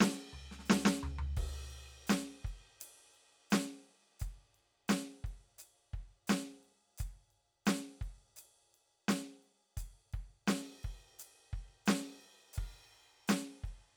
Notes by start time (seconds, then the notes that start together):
0.01 snare, hi-hat pedal, ride
0.33 floor tom
0.52 snare
0.59 snare
0.66 snare, hi-hat pedal
0.70 snare
0.86 snare
1.03 floor tom
1.19 floor tom
1.37 kick, crash
1.70 ride
2.07 snare, hi-hat pedal, ride
2.45 kick, ride
2.81 hi-hat pedal, ride
3.14 ride
3.51 snare, hi-hat pedal, ride
4.20 kick, hi-hat pedal, ride
4.55 ride
4.89 snare, hi-hat pedal, ride
5.25 kick, ride
5.59 hi-hat pedal, ride
5.94 kick, ride
6.28 snare, hi-hat pedal, ride
6.64 ride
6.98 kick, hi-hat pedal, ride
7.31 ride
7.66 snare, hi-hat pedal, ride
8.02 kick, ride
8.37 hi-hat pedal, ride
8.75 ride
9.09 snare, hi-hat pedal, ride
9.43 ride
9.77 kick, hi-hat pedal, ride
10.13 kick, ride
10.48 snare, hi-hat pedal, crash
10.84 kick, ride
11.19 hi-hat pedal, ride
11.53 kick, ride
11.86 snare, hi-hat pedal, crash
12.21 ride
12.54 hi-hat pedal, crash
12.58 kick
13.28 snare, hi-hat pedal, ride
13.64 kick, ride